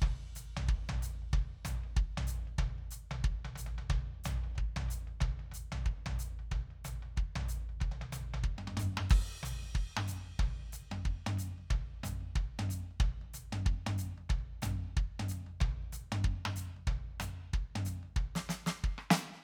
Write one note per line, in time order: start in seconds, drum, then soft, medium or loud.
0.01 kick medium
0.01 floor tom soft
0.04 floor tom loud
0.36 floor tom medium
0.36 hi-hat pedal medium
0.57 floor tom loud
0.69 kick medium
0.69 floor tom soft
0.90 floor tom loud
1.03 floor tom soft
1.03 hi-hat pedal medium
1.22 floor tom soft
1.34 kick medium
1.34 floor tom medium
1.66 floor tom loud
1.66 hi-hat pedal medium
1.84 floor tom soft
1.97 kick medium
1.97 floor tom soft
2.18 floor tom loud
2.28 floor tom soft
2.28 hi-hat pedal medium
2.48 floor tom soft
2.59 kick medium
2.59 floor tom loud
2.78 kick soft
2.78 floor tom soft
2.92 floor tom soft
2.92 hi-hat pedal medium
3.12 floor tom loud
3.25 kick medium
3.25 floor tom soft
3.45 floor tom medium
3.56 floor tom medium
3.56 hi-hat pedal medium
3.67 floor tom medium
3.79 floor tom medium
3.91 kick medium
3.91 floor tom loud
4.25 floor tom loud
4.25 hi-hat pedal medium
4.44 floor tom soft
4.56 kick medium
4.56 floor tom soft
4.77 floor tom loud
4.89 floor tom soft
4.89 hi-hat pedal medium
5.08 floor tom soft
5.21 kick medium
5.21 floor tom loud
5.40 floor tom soft
5.52 floor tom medium
5.52 hi-hat pedal medium
5.73 floor tom loud
5.87 kick medium
5.87 floor tom soft
6.07 floor tom loud
6.20 floor tom soft
6.20 hi-hat pedal medium
6.40 floor tom soft
6.52 kick medium
6.52 floor tom medium
6.71 floor tom soft
6.85 floor tom medium
6.85 hi-hat pedal medium
7.03 floor tom soft
7.17 kick medium
7.17 floor tom soft
7.36 floor tom loud
7.42 floor tom soft
7.49 floor tom soft
7.49 hi-hat pedal medium
7.70 floor tom soft
7.81 kick medium
7.81 floor tom medium
7.92 floor tom medium
8.02 floor tom medium
8.13 floor tom loud
8.13 hi-hat pedal medium
8.35 floor tom loud
8.44 kick medium
8.49 high tom soft
8.68 high tom loud
8.78 hi-hat pedal medium
8.78 high tom loud
8.98 high tom loud
9.11 kick loud
9.11 crash medium
9.44 floor tom loud
9.44 hi-hat pedal medium
9.63 high tom soft
9.75 kick medium
9.75 floor tom soft
9.97 high tom loud
10.09 floor tom soft
10.09 hi-hat pedal medium
10.28 high tom soft
10.40 kick medium
10.40 floor tom loud
10.61 high tom soft
10.73 floor tom medium
10.73 hi-hat pedal medium
10.92 high tom loud
11.06 kick medium
11.06 floor tom soft
11.27 high tom loud
11.38 floor tom soft
11.38 hi-hat pedal medium
11.59 high tom soft
11.71 kick medium
11.71 floor tom medium
11.91 kick soft
12.04 floor tom medium
12.04 hi-hat pedal medium
12.04 high tom loud
12.21 high tom soft
12.36 kick medium
12.36 floor tom medium
12.60 high tom loud
12.70 floor tom soft
12.70 hi-hat pedal medium
12.92 high tom soft
13.01 kick loud
13.01 floor tom medium
13.22 high tom soft
13.34 floor tom medium
13.34 hi-hat pedal medium
13.53 high tom loud
13.66 kick medium
13.66 floor tom soft
13.87 high tom loud
13.99 kick soft
13.99 floor tom soft
13.99 hi-hat pedal medium
14.18 high tom soft
14.30 kick medium
14.30 floor tom medium
14.63 floor tom medium
14.63 hi-hat pedal medium
14.63 high tom loud
14.97 kick medium
14.97 floor tom soft
15.20 high tom loud
15.29 kick soft
15.29 floor tom soft
15.29 hi-hat pedal medium
15.47 high tom soft
15.61 kick medium
15.61 floor tom loud
15.83 high tom soft
15.93 floor tom medium
15.93 hi-hat pedal medium
16.13 high tom loud
16.25 kick medium
16.25 floor tom soft
16.46 high tom loud
16.57 floor tom soft
16.57 hi-hat pedal medium
16.77 high tom soft
16.88 kick medium
16.88 floor tom medium
17.21 floor tom medium
17.21 hi-hat pedal medium
17.21 high tom loud
17.54 kick medium
17.54 floor tom medium
17.76 high tom loud
17.86 floor tom medium
17.86 hi-hat pedal medium
18.04 high tom soft
18.17 kick medium
18.17 floor tom medium
18.36 snare loud
18.50 snare medium
18.50 hi-hat pedal medium
18.67 snare loud
18.85 kick medium
18.99 cross-stick medium
19.11 snare loud
19.16 hi-hat pedal medium
19.34 snare soft